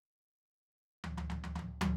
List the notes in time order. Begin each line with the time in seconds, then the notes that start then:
1.04 floor tom, high tom
1.17 floor tom, high tom
1.29 floor tom, high tom
1.43 floor tom, high tom
1.55 floor tom, high tom
1.81 floor tom, high tom